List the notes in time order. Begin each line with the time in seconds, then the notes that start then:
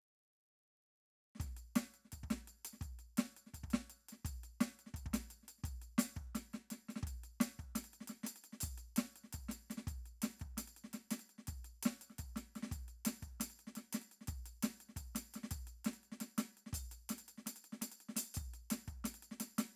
1.35 snare
1.38 kick, snare
1.41 snare, percussion
1.44 snare
1.57 percussion
1.76 snare, percussion
1.94 percussion
2.05 snare
2.12 kick, percussion
2.23 kick
2.30 snare, percussion
2.47 percussion
2.65 percussion
2.73 snare
2.81 kick, percussion
2.99 percussion
3.17 snare, percussion
3.36 percussion
3.46 snare
3.54 kick, percussion
3.63 kick
3.70 snare, percussion
3.90 percussion
4.08 snare, percussion
4.25 kick, percussion
4.43 percussion
4.61 snare, percussion
4.79 percussion
4.86 snare
4.94 kick, percussion
5.06 kick
5.13 snare, percussion
5.30 percussion
5.43 snare
5.48 percussion
5.58 snare
5.64 kick, percussion
5.82 percussion
5.98 snare, percussion
6.16 kick, percussion
6.35 snare, percussion
6.53 snare, percussion
6.70 snare, percussion
6.88 snare, percussion
6.96 snare
7.03 kick
7.07 percussion
7.23 percussion
7.40 snare, percussion
7.59 kick, percussion
7.75 snare, percussion
7.84 percussion
7.93 percussion
8.01 snare
8.07 snare, percussion
8.23 snare, percussion
8.36 percussion
8.44 percussion
8.52 snare
8.60 kick, percussion
8.78 percussion
8.96 snare, percussion
9.16 percussion
9.24 snare
9.33 kick, percussion
9.48 snare, percussion
9.70 snare, percussion
9.77 snare
9.87 kick, percussion
10.06 percussion
10.22 snare, percussion
10.40 kick, percussion
10.57 snare, percussion
10.67 percussion
10.76 percussion
10.84 snare
10.93 snare, percussion
11.11 snare, percussion
11.19 percussion
11.29 percussion
11.38 snare
11.47 kick, percussion
11.64 percussion
11.83 snare, percussion
12.01 percussion
12.10 snare
12.18 kick, percussion
12.36 snare, percussion
12.55 snare, percussion
12.62 snare
12.66 snare
12.71 kick, percussion
12.88 percussion
13.05 snare, percussion
13.22 kick, percussion
13.40 snare, percussion
13.50 percussion
13.59 percussion
13.67 snare
13.75 snare, percussion
13.93 snare, percussion
14.02 percussion
14.11 percussion
14.21 snare
14.27 kick, percussion
14.46 percussion
14.62 snare, percussion
14.80 percussion
14.89 snare
14.96 kick, percussion
15.15 snare, percussion
15.34 snare, percussion
15.43 snare
15.51 kick, percussion
15.67 percussion
15.84 snare, percussion
15.93 percussion
16.03 percussion
16.12 snare
16.20 snare, percussion
16.38 snare, percussion
16.57 percussion
16.66 snare
16.73 kick, percussion
16.91 percussion
17.09 snare, percussion
17.18 percussion
17.28 percussion
17.38 snare
17.46 snare, percussion
17.56 percussion
17.64 percussion
17.72 snare
17.81 snare, percussion
17.92 percussion
18.00 percussion
18.09 snare
18.16 snare, percussion
18.34 kick, percussion
18.54 percussion
18.70 snare, percussion
18.88 kick, percussion
19.04 snare, percussion
19.14 percussion
19.22 percussion
19.31 snare
19.40 snare, percussion
19.58 snare, percussion